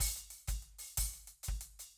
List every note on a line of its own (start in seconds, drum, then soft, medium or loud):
0.00 open hi-hat loud
0.00 kick medium
0.16 open hi-hat medium
0.30 open hi-hat medium
0.47 open hi-hat medium
0.47 kick medium
0.62 open hi-hat soft
0.79 open hi-hat medium
0.97 kick medium
0.97 open hi-hat loud
1.13 open hi-hat soft
1.27 open hi-hat medium
1.43 open hi-hat medium
1.48 kick medium
1.61 open hi-hat medium
1.79 open hi-hat medium